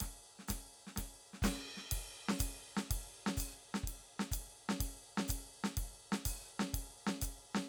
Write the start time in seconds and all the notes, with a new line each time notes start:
0.01 kick, snare, ride
0.40 snare
0.48 kick, snare, hi-hat pedal, ride
0.88 snare
0.96 kick, snare, hi-hat pedal, ride
1.34 snare
1.43 kick, snare, hi-hat pedal, ride
1.78 snare
1.92 kick, ride
2.29 snare
2.40 kick, hi-hat pedal, ride
2.77 snare
2.91 kick, ride
3.27 snare
3.38 kick, hi-hat pedal, ride
3.75 snare
3.84 kick
3.88 ride
4.20 snare
4.32 kick, hi-hat pedal, ride
4.70 snare
4.81 kick, ride
5.18 snare
5.29 kick, hi-hat pedal, ride
5.65 snare
5.78 kick, ride
6.13 snare
6.26 kick, hi-hat pedal, ride
6.60 snare
6.74 kick, ride
7.07 snare
7.22 kick, hi-hat pedal, ride
7.55 snare